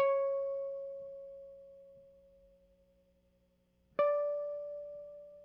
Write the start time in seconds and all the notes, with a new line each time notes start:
0.00 C#5
3.99 D5